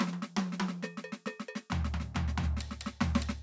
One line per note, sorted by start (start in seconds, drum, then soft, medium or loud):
0.00 snare medium
0.00 high tom loud
0.07 snare medium
0.13 high tom medium
0.22 snare medium
0.36 snare medium
0.36 high tom loud
0.52 snare medium
0.60 high tom loud
0.68 snare medium
0.83 snare medium
0.83 percussion loud
0.97 snare medium
1.04 percussion loud
1.12 snare medium
1.26 snare medium
1.26 percussion loud
1.39 snare medium
1.48 percussion loud
1.55 snare medium
1.70 snare medium
1.70 floor tom loud
1.73 snare soft
1.84 snare medium
1.94 floor tom medium
2.00 snare medium
2.02 snare soft
2.14 snare soft
2.14 floor tom loud
2.28 snare soft
2.38 floor tom loud
2.43 snare soft
2.57 snare medium
2.57 floor tom loud
2.71 snare medium
2.81 floor tom loud
2.86 snare medium
3.01 snare medium
3.01 floor tom loud
3.15 snare loud
3.18 snare medium
3.18 floor tom loud
3.29 snare medium